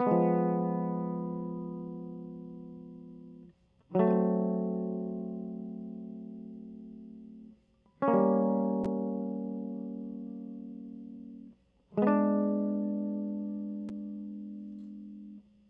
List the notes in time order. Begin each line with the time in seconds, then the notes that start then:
0.00 B3
0.07 G#3
0.12 F3
3.95 F#3 A3
4.07 C4
8.03 C#4
8.08 A#3
8.14 G3
11.98 G#3
12.03 B3
12.07 D4